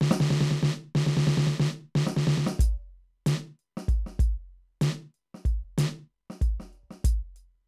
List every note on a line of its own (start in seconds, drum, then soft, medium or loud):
0.01 snare loud
0.11 snare loud
0.20 snare loud
0.30 snare loud
0.41 snare loud
0.63 snare loud
0.95 snare loud
1.07 snare loud
1.17 snare loud
1.37 snare loud
1.47 snare loud
1.60 snare loud
1.95 snare loud
2.07 snare medium
2.17 snare loud
2.27 snare loud
2.38 snare loud
2.47 snare medium
2.59 closed hi-hat loud
2.59 kick medium
3.26 closed hi-hat loud
3.26 snare loud
3.59 closed hi-hat soft
3.77 snare medium
3.88 closed hi-hat medium
3.88 kick medium
4.06 snare soft
4.19 closed hi-hat medium
4.19 kick medium
4.81 closed hi-hat medium
4.81 snare loud
5.14 closed hi-hat soft
5.34 snare soft
5.45 closed hi-hat soft
5.45 kick medium
5.78 closed hi-hat loud
5.78 snare loud
6.30 snare soft
6.41 closed hi-hat medium
6.41 kick medium
6.60 snare soft
6.73 closed hi-hat soft
6.83 kick soft
6.91 snare soft
7.04 closed hi-hat loud
7.04 kick medium
7.36 closed hi-hat soft